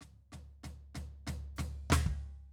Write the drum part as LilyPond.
\new DrumStaff \drummode { \time 4/4 \tempo 4 = 95 <sn tomfh>8 <sn tomfh>8 <sn tomfh>8 <sn tomfh>8 <sn tomfh>8 <hhp sn tomfh>8 <tomfh sn>16 bd8. | }